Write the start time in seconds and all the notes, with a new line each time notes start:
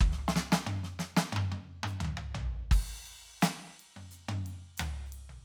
0.01 kick, mid tom
0.12 snare
0.19 cross-stick
0.28 snare
0.36 snare
0.52 snare
0.67 high tom
0.84 snare
0.99 snare
1.17 snare
1.33 high tom
1.37 high tom
1.52 high tom
1.84 hi-hat pedal, high tom
2.01 mid tom
2.05 mid tom
2.17 mid tom
2.35 floor tom
2.72 kick, crash
3.06 ride
3.42 snare, hi-hat pedal, ride
3.80 ride
3.97 high tom
4.11 hi-hat pedal, ride
4.29 high tom
4.46 ride
4.78 hi-hat pedal, mid tom, ride
5.06 hi-hat pedal
5.13 ride
5.30 floor tom